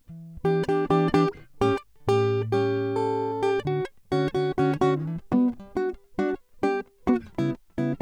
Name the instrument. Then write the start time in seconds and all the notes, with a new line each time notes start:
acoustic guitar
0.11 E3
0.46 E3 B3 C#4 G4
0.70 E3 B3 D4 G4
0.91 E3 B3 D4 G4
1.15 E3 B3 D4 G4
1.62 A2 G3 C#4 G4
2.08 A2 G3 C#4 G4
2.53 G3 C#4 G4
2.97 A4
3.44 G4
3.66 D3 C#4 F#4
4.12 D3 A3 C#4 F#4
4.34 D3 A3 C#4 F#4
4.59 D3 A3 C#4 F#4
4.82 D3 A3 C#4 F#4
5.02 E3
5.33 G3 B3 D4 F#4
5.61 G3
5.77 G3 B3 D4 F#4
6.20 B3 D4 F#4
6.30 G3
6.64 B3 C#4 G4
6.74 G3
7.08 G3 A#3 D4 F#4
7.39 C#3 G3 B3 E4
7.79 C#3 G3 B3 E4